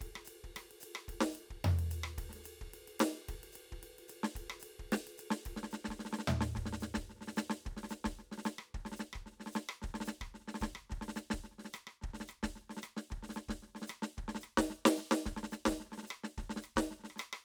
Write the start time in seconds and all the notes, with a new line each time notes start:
0.01 kick, ride
0.16 cross-stick
0.25 hi-hat pedal, ride
0.44 kick
0.56 cross-stick, ride
0.71 ride
0.81 hi-hat pedal, ride
0.95 cross-stick
1.08 kick, ride
1.21 snare
1.31 hi-hat pedal, ride
1.51 kick
1.65 floor tom, ride
1.79 ride
1.91 hi-hat pedal, ride
2.04 cross-stick
2.18 kick, ride
2.30 snare, ride
2.35 snare
2.39 snare
2.43 snare, hi-hat pedal, ride
2.61 kick
2.74 ride
2.88 ride
3.00 snare, hi-hat pedal, ride
3.29 kick, snare, ride
3.44 snare, ride
3.52 hi-hat pedal, ride
3.72 kick
3.83 ride
3.99 ride
4.08 hi-hat pedal, ride
4.24 snare
4.36 kick, ride
4.50 cross-stick
4.60 hi-hat pedal, ride
4.80 kick
4.92 snare, ride
5.07 ride
5.18 hi-hat pedal, ride
5.31 snare
5.46 kick, ride
5.57 snare
5.64 snare
5.71 snare, hi-hat pedal
5.85 kick, snare
5.91 snare
6.00 snare
6.05 snare
6.12 snare
6.19 snare
6.28 hi-hat pedal, floor tom
6.41 snare
6.55 kick, snare
6.63 kick, snare
6.73 snare
6.81 snare, hi-hat pedal
6.94 kick, snare
7.10 snare
7.17 snare
7.21 snare
7.28 snare
7.36 snare, hi-hat pedal
7.50 snare
7.66 kick, snare
7.73 kick
7.77 snare
7.84 snare
7.89 snare, hi-hat pedal
8.05 kick, snare
8.11 kick
8.19 snare
8.32 snare
8.38 snare
8.44 snare, hi-hat pedal
8.59 cross-stick
8.75 kick, snare
8.81 kick
8.85 snare
8.92 snare
8.96 snare, hi-hat pedal
9.13 kick, cross-stick
9.26 snare
9.32 snare
9.38 snare
9.40 snare
9.46 snare
9.53 snare, hi-hat pedal
9.69 cross-stick
9.82 kick, snare
9.90 kick, snare
10.01 snare
10.06 snare, hi-hat pedal
10.21 kick, cross-stick
10.34 snare
10.40 snare
10.45 snare
10.48 snare
10.55 snare
10.60 kick, snare, hi-hat pedal
10.68 kick
10.75 cross-stick
10.90 kick, snare
10.99 kick, snare
11.09 snare
11.16 snare, hi-hat pedal
11.31 kick, snare
11.40 kick
11.44 snare
11.52 snare
11.57 snare
11.65 snare
11.73 cross-stick, hi-hat pedal
11.87 cross-stick
12.02 kick, snare
12.10 kick, snare
12.14 snare
12.20 snare
12.28 cross-stick, hi-hat pedal
12.43 kick, snare
12.49 kick
12.56 snare
12.62 snare
12.67 snare
12.70 snare
12.77 snare
12.82 cross-stick, hi-hat pedal
12.97 snare
13.11 kick, snare
13.18 snare
13.23 snare
13.29 snare, hi-hat pedal
13.36 snare
13.49 kick, snare
13.63 snare
13.68 snare
13.74 snare
13.75 snare
13.82 snare
13.87 cross-stick, hi-hat pedal
14.03 snare
14.17 kick, snare
14.26 kick, snare
14.35 snare
14.41 cross-stick, hi-hat pedal
14.58 kick, snare
14.70 snare
14.86 snare
14.97 snare, hi-hat pedal
15.11 snare
15.26 kick, snare
15.33 kick, snare
15.43 snare
15.52 snare, hi-hat pedal
15.66 kick, snare
15.71 snare
15.80 snare
15.86 snare
15.90 snare
15.92 snare
15.98 snare
16.03 snare
16.07 cross-stick, hi-hat pedal
16.24 snare
16.38 kick, snare
16.44 kick
16.50 snare
16.56 snare
16.62 cross-stick, hi-hat pedal
16.76 kick, snare
16.91 snare
17.00 snare
17.04 snare
17.10 cross-stick
17.16 cross-stick, snare, hi-hat pedal
17.33 cross-stick